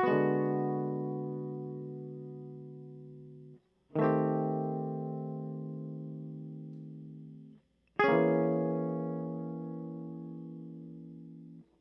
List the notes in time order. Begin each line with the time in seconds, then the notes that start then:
0.00 F#4
0.05 B3
0.09 G#3
0.13 D3
3.97 D#3 A3
4.02 C4 G4
8.00 G#4
8.05 C#4
8.09 E3 A#3